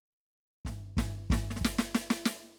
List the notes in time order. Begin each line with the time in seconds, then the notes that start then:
0.65 kick, snare, floor tom
0.97 kick, snare, floor tom
1.30 kick, snare, floor tom
1.50 snare
1.56 snare
1.61 kick, snare
1.78 snare
1.95 snare
2.10 snare
2.26 snare